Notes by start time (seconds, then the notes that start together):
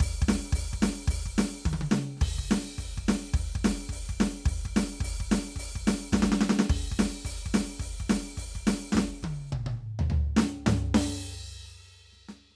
0.01 open hi-hat, kick
0.23 kick
0.29 open hi-hat, snare
0.53 open hi-hat, kick
0.74 kick
0.83 open hi-hat, snare
1.08 open hi-hat, kick
1.26 kick
1.39 open hi-hat, snare
1.66 kick, high tom
1.74 high tom
1.82 high tom
1.92 snare
2.18 snare
2.22 kick, crash
2.39 kick
2.52 open hi-hat, snare
2.79 open hi-hat, kick
2.98 kick
3.09 open hi-hat, snare
3.34 open hi-hat, kick
3.56 kick
3.65 open hi-hat, snare
3.90 open hi-hat, kick
4.10 kick
4.21 open hi-hat, snare
4.46 open hi-hat, kick
4.66 kick
4.77 open hi-hat, snare
5.01 open hi-hat, kick
5.21 kick
5.32 open hi-hat, snare
5.57 open hi-hat, kick
5.76 kick
5.88 open hi-hat, snare
6.13 kick, snare
6.23 snare
6.33 snare
6.42 snare
6.50 snare
6.60 snare
6.70 kick, crash
6.92 kick
7.00 open hi-hat, snare
7.26 open hi-hat, kick
7.47 kick
7.55 open hi-hat, snare
7.80 open hi-hat, kick
8.01 kick
8.10 open hi-hat, snare
8.38 open hi-hat, kick
8.56 kick
8.68 open hi-hat, snare
8.93 kick, snare
8.98 snare
9.24 kick, high tom
9.51 kick, hi-hat pedal, mid tom
9.67 mid tom
10.00 floor tom
10.11 floor tom
10.37 snare
10.39 snare
10.67 snare, floor tom
10.95 snare, crash
12.13 snare
12.29 snare
12.51 snare